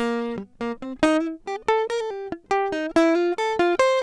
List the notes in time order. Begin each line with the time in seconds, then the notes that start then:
0.00 A#3
0.40 G3
0.63 A#3
0.84 C4
1.05 D#4
1.50 G4
1.70 A4
1.92 A#4
2.02 A4
2.12 G4
2.34 E4
2.53 G4
2.75 D#4
2.98 E4
3.17 F4
3.40 A4
3.62 F4
3.81 C5